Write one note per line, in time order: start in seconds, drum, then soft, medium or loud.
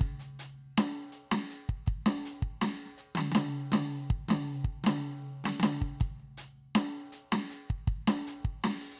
0.01 kick medium
0.20 closed hi-hat loud
0.39 closed hi-hat loud
0.78 closed hi-hat loud
0.78 snare loud
0.97 closed hi-hat soft
1.03 snare soft
1.12 closed hi-hat medium
1.32 snare loud
1.32 closed hi-hat soft
1.50 closed hi-hat loud
1.68 kick soft
1.68 closed hi-hat soft
1.86 closed hi-hat medium
1.86 kick medium
2.06 snare loud
2.25 closed hi-hat loud
2.42 kick soft
2.42 closed hi-hat soft
2.61 open hi-hat loud
2.61 snare loud
2.85 snare soft
2.98 hi-hat pedal medium
3.15 snare loud
3.15 high tom loud
3.32 snare loud
3.32 hi-hat pedal soft
3.32 high tom loud
3.72 snare loud
3.72 hi-hat pedal soft
3.72 high tom loud
4.10 kick medium
4.29 snare loud
4.29 high tom loud
4.32 high tom loud
4.65 kick medium
4.84 snare loud
4.84 high tom loud
5.44 snare loud
5.44 high tom medium
5.60 snare loud
5.60 high tom loud
5.82 kick soft
6.00 closed hi-hat loud
6.00 kick medium
6.20 closed hi-hat soft
6.38 closed hi-hat loud
6.75 closed hi-hat loud
6.75 snare loud
6.95 closed hi-hat soft
7.12 closed hi-hat medium
7.32 snare loud
7.32 closed hi-hat soft
7.50 closed hi-hat loud
7.69 kick soft
7.69 closed hi-hat soft
7.88 closed hi-hat medium
7.88 kick medium
8.08 snare loud
8.27 closed hi-hat loud
8.43 kick soft
8.43 closed hi-hat soft
8.60 hi-hat pedal soft
8.64 open hi-hat loud
8.64 snare loud